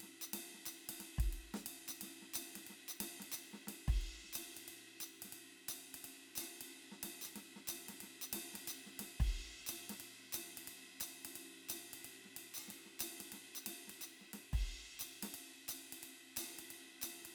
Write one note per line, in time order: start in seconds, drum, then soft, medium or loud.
0.01 snare soft
0.01 ride medium
0.22 hi-hat pedal medium
0.34 snare soft
0.34 ride loud
0.55 snare soft
0.66 hi-hat pedal medium
0.66 ride medium
0.89 snare soft
0.89 ride medium
1.00 snare soft
1.00 ride medium
1.19 kick soft
1.19 ride medium
1.33 ride medium
1.55 snare medium
1.67 ride medium
1.89 hi-hat pedal medium
1.89 ride medium
2.02 snare soft
2.02 ride medium
2.22 snare soft
2.34 hi-hat pedal loud
2.34 ride medium
2.56 snare soft
2.56 ride medium
2.67 snare soft
2.67 ride medium
2.89 hi-hat pedal medium
3.01 snare soft
3.01 ride loud
3.20 snare soft
3.20 ride medium
3.32 hi-hat pedal loud
3.32 ride medium
3.54 snare soft
3.68 snare soft
3.68 ride medium
3.88 kick medium
3.88 ride medium
4.02 ride soft
4.25 snare soft
4.33 hi-hat pedal medium
4.33 ride medium
4.54 hi-hat pedal soft
4.54 ride medium
4.69 ride medium
4.88 snare soft
4.97 snare soft
4.97 ride medium
5.01 hi-hat pedal medium
5.23 snare soft
5.23 ride medium
5.33 ride medium
5.69 hi-hat pedal medium
5.69 ride medium
5.95 ride medium
6.05 ride medium
6.36 hi-hat pedal medium
6.36 ride loud
6.62 ride medium
6.92 snare soft
7.04 snare soft
7.04 ride medium
7.22 hi-hat pedal medium
7.22 ride medium
7.36 snare soft
7.36 ride medium
7.57 snare soft
7.68 hi-hat pedal loud
7.68 ride medium
7.89 snare soft
7.89 ride medium
8.01 snare soft
8.01 ride medium
8.22 hi-hat pedal loud
8.34 snare soft
8.34 ride loud
8.55 snare soft
8.55 ride medium
8.68 hi-hat pedal loud
8.68 ride medium
8.87 snare soft
9.00 snare soft
9.00 ride medium
9.21 kick soft
9.21 ride medium
9.60 snare soft
9.67 hi-hat pedal medium
9.67 ride medium
9.89 snare soft
9.89 hi-hat pedal soft
9.89 ride medium
10.00 ride medium
10.25 snare soft
10.33 hi-hat pedal loud
10.33 ride loud
10.58 ride medium
10.68 ride medium
11.01 hi-hat pedal loud
11.01 ride medium
11.25 ride medium
11.36 ride medium
11.69 hi-hat pedal medium
11.69 ride medium
11.94 ride medium
12.05 ride medium
12.26 snare soft
12.37 ride medium
12.55 hi-hat pedal medium
12.59 ride medium
12.69 snare soft
12.69 ride medium
12.86 snare soft
13.00 hi-hat pedal loud
13.00 ride loud
13.20 snare soft
13.20 ride medium
13.33 snare soft
13.33 ride medium
13.56 hi-hat pedal medium
13.67 snare soft
13.67 ride medium
13.88 snare soft
13.88 ride medium
14.02 hi-hat pedal medium
14.02 ride medium
14.22 snare soft
14.34 snare soft
14.34 ride medium
14.54 kick soft
14.54 ride medium
15.00 hi-hat pedal medium
15.00 ride medium
15.23 snare medium
15.23 ride medium
15.35 ride medium
15.69 hi-hat pedal medium
15.69 ride medium
15.93 ride medium
16.04 ride medium
16.37 hi-hat pedal medium
16.37 ride loud
16.57 hi-hat pedal soft
16.57 ride medium
16.71 ride medium
17.02 hi-hat pedal medium
17.02 ride medium
17.26 ride medium